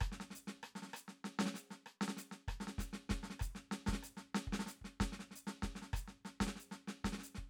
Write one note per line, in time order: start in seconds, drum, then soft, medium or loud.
0.01 kick soft
0.01 cross-stick medium
0.12 snare soft
0.20 snare soft
0.31 snare soft
0.35 hi-hat pedal medium
0.48 snare soft
0.63 cross-stick medium
0.76 snare soft
0.83 snare soft
0.88 snare soft
0.94 cross-stick medium
0.94 hi-hat pedal medium
1.08 snare soft
1.25 snare soft
1.39 snare medium
1.46 snare medium
1.55 snare soft
1.55 hi-hat pedal medium
1.71 snare soft
1.86 cross-stick soft
2.01 snare medium
2.08 snare medium
2.17 snare soft
2.17 hi-hat pedal medium
2.32 snare soft
2.48 kick soft
2.48 cross-stick medium
2.61 snare soft
2.67 snare soft
2.79 kick soft
2.79 snare soft
2.79 hi-hat pedal medium
2.93 snare soft
3.10 kick soft
3.10 snare medium
3.23 snare soft
3.30 snare soft
3.40 kick soft
3.40 cross-stick medium
3.40 hi-hat pedal medium
3.55 snare soft
3.72 snare medium
3.87 kick soft
3.87 snare medium
3.93 snare medium
4.03 cross-stick soft
4.03 hi-hat pedal medium
4.17 snare soft
4.35 snare medium
4.47 kick soft
4.53 snare medium
4.60 snare medium
4.67 snare soft
4.67 hi-hat pedal medium
4.82 kick soft
4.82 snare soft
5.00 kick soft
5.00 snare medium
5.12 snare soft
5.20 snare soft
5.31 snare soft
5.36 hi-hat pedal medium
5.47 snare soft
5.63 kick soft
5.63 snare medium
5.76 snare soft
5.82 snare soft
5.89 snare soft
5.93 kick soft
5.93 cross-stick medium
5.93 hi-hat pedal medium
6.08 snare soft
6.25 snare soft
6.41 kick soft
6.41 snare medium
6.47 snare medium
6.56 snare soft
6.60 hi-hat pedal soft
6.72 snare soft
6.88 snare soft
7.05 kick soft
7.05 snare medium
7.13 snare soft
7.18 snare soft
7.24 hi-hat pedal medium
7.35 kick soft
7.35 snare soft